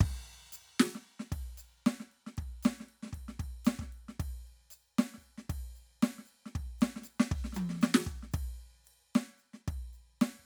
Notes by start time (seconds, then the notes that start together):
0.01 kick, crash
0.53 percussion
0.80 snare, crash
0.96 snare
1.20 snare
1.33 kick, crash
1.58 percussion
1.87 snare, crash
2.01 snare
2.12 crash
2.27 snare
2.38 kick, crash
2.64 snare, crash, percussion
2.81 snare
2.84 snare
2.89 crash
3.03 snare
3.07 snare
3.14 kick, crash
3.29 snare
3.40 kick, crash
3.66 snare, crash, percussion
3.80 kick, snare
3.93 crash
4.09 snare
4.20 kick, crash
4.48 crash
4.71 crash, percussion
4.99 snare, crash
5.15 kick, snare
5.21 percussion
5.25 crash
5.39 snare
5.50 kick, crash
5.76 crash, percussion
6.03 snare, crash
6.19 snare
6.26 crash, percussion
6.47 snare
6.56 kick, crash
6.79 snare, crash, percussion
6.97 snare
7.02 snare, percussion
7.07 crash
7.21 snare
7.32 kick, crash
7.45 snare
7.53 snare, high tom, percussion
7.70 snare
7.74 kick, snare
7.77 snare
7.82 snare, percussion
7.95 snare
8.07 kick, snare
8.23 snare
8.32 kick, crash, percussion
8.85 crash, percussion
9.16 snare, crash
9.39 percussion
9.54 snare
9.69 kick, crash
9.94 crash, percussion
10.22 snare, crash
10.40 kick